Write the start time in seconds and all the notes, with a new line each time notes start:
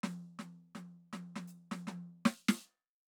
0.02 snare, high tom
0.39 snare, high tom
0.75 snare, high tom
1.13 snare, high tom
1.36 snare, high tom
1.47 hi-hat pedal
1.71 snare, high tom
1.87 snare, high tom
2.25 snare
2.48 snare